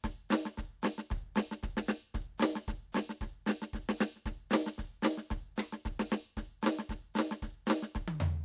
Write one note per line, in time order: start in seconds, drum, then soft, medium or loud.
0.01 kick medium
0.01 snare medium
0.01 hi-hat pedal soft
0.29 snare medium
0.29 hi-hat pedal medium
0.33 snare loud
0.46 snare medium
0.58 kick soft
0.58 snare soft
0.82 snare medium
0.82 hi-hat pedal medium
0.85 snare loud
0.98 snare medium
1.10 kick medium
1.10 snare soft
1.35 snare medium
1.35 snare loud
1.35 hi-hat pedal medium
1.51 snare medium
1.63 kick medium
1.63 snare soft
1.77 snare medium
1.86 snare medium
1.86 hi-hat pedal medium
2.14 kick medium
2.14 snare soft
2.38 snare medium
2.38 hi-hat pedal medium
2.43 snare loud
2.56 snare medium
2.68 kick medium
2.68 snare soft
2.92 snare medium
2.92 hi-hat pedal medium
2.97 snare medium
3.09 snare medium
3.21 kick medium
3.21 snare soft
3.46 snare medium
3.46 hi-hat pedal medium
3.49 snare medium
3.62 snare medium
3.73 kick soft
3.73 snare soft
3.89 snare medium
3.97 snare loud
3.97 hi-hat pedal medium
4.16 snare soft
4.26 kick medium
4.26 snare soft
4.50 snare medium
4.50 hi-hat pedal medium
4.54 snare loud
4.67 snare medium
4.78 kick soft
4.78 snare soft
5.02 snare medium
5.02 hi-hat pedal medium
5.05 snare loud
5.18 snare soft
5.30 kick medium
5.30 snare soft
5.56 cross-stick medium
5.56 snare medium
5.56 hi-hat pedal medium
5.73 snare soft
5.85 kick medium
5.85 snare soft
5.99 snare medium
6.09 snare medium
6.09 hi-hat pedal medium
6.37 kick soft
6.37 snare medium
6.62 snare medium
6.62 hi-hat pedal medium
6.66 snare loud
6.79 snare medium
6.89 kick soft
6.89 snare soft
7.14 snare medium
7.14 hi-hat pedal medium
7.19 snare medium
7.31 snare medium
7.42 kick soft
7.42 snare soft
7.66 snare medium
7.66 hi-hat pedal medium
7.70 snare loud
7.83 snare medium
7.95 kick medium
7.95 snare soft
8.08 high tom loud
8.20 floor tom loud
8.20 hi-hat pedal medium